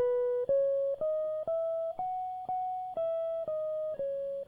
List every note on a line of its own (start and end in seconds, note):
0.00 0.46 B4
0.49 0.97 C#5
1.01 1.46 D#5
1.48 1.97 E5
1.99 2.49 F#5
2.49 2.97 F#5
2.97 3.46 E5
3.48 3.97 D#5
4.00 4.48 C#5